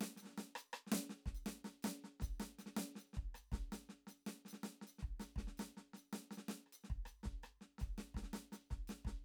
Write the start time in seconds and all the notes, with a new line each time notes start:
0.01 snare
0.17 snare, hi-hat pedal
0.23 snare
0.25 snare
0.27 snare
0.29 snare
0.38 snare
0.55 cross-stick, hi-hat pedal
0.73 cross-stick
0.87 snare
0.92 snare
1.10 snare
1.26 kick, snare
1.35 hi-hat pedal
1.46 snare
1.65 snare
1.83 snare, hi-hat pedal
2.04 snare
2.20 kick, snare, hi-hat pedal
2.40 snare
2.59 snare, hi-hat pedal
2.66 snare
2.77 snare
2.96 snare, hi-hat pedal
3.13 kick, snare
3.35 cross-stick, hi-hat pedal
3.52 kick, snare
3.72 snare, hi-hat pedal
3.89 snare
4.07 snare, hi-hat pedal
4.27 snare
4.45 snare, hi-hat pedal
4.53 snare
4.64 snare
4.82 snare
4.87 hi-hat pedal
4.99 kick, snare
5.20 snare, hi-hat pedal
5.36 kick, snare
5.47 snare
5.57 snare, hi-hat pedal
5.77 snare
5.94 snare, hi-hat pedal
6.13 snare
6.31 snare, hi-hat pedal
6.38 snare
6.49 snare
6.66 cross-stick
6.73 hi-hat pedal
6.84 snare
6.90 kick
7.06 cross-stick, hi-hat pedal
7.23 kick, snare
7.43 cross-stick, hi-hat pedal
7.61 snare
7.78 snare, hi-hat pedal
7.80 kick, snare
7.98 snare
8.15 kick, snare
8.23 snare
8.33 snare
8.52 snare, hi-hat pedal
8.71 kick, snare
8.88 snare, hi-hat pedal
9.05 kick, snare